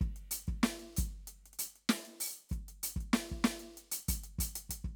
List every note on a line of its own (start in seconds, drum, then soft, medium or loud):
0.01 kick medium
0.01 closed hi-hat soft
0.16 closed hi-hat soft
0.31 closed hi-hat loud
0.47 kick medium
0.47 closed hi-hat soft
0.63 snare loud
0.79 closed hi-hat soft
0.97 closed hi-hat loud
0.97 kick medium
1.27 closed hi-hat medium
1.46 closed hi-hat soft
1.53 closed hi-hat soft
1.59 closed hi-hat loud
1.76 closed hi-hat soft
1.89 snare loud
2.05 closed hi-hat soft
2.20 open hi-hat loud
2.36 open hi-hat soft
2.49 kick medium
2.49 closed hi-hat soft
2.49 hi-hat pedal soft
2.68 closed hi-hat medium
2.83 closed hi-hat loud
2.96 kick soft
3.01 closed hi-hat soft
3.13 snare loud
3.29 kick soft
3.29 closed hi-hat soft
3.44 snare loud
3.59 closed hi-hat medium
3.77 closed hi-hat medium
3.92 closed hi-hat loud
4.08 closed hi-hat loud
4.08 kick medium
4.24 closed hi-hat medium
4.39 closed hi-hat loud
4.39 kick medium
4.56 closed hi-hat loud
4.70 kick soft
4.70 closed hi-hat loud
4.84 kick soft